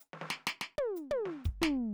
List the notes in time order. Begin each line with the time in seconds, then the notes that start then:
0.00 hi-hat pedal
0.13 snare
0.21 snare
0.30 snare
0.47 snare, hi-hat pedal
0.61 snare
0.78 high tom
0.96 hi-hat pedal
1.11 high tom
1.25 snare
1.44 kick, hi-hat pedal
1.61 snare, floor tom